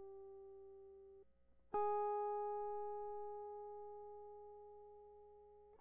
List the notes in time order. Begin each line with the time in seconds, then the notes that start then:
1.74 G#4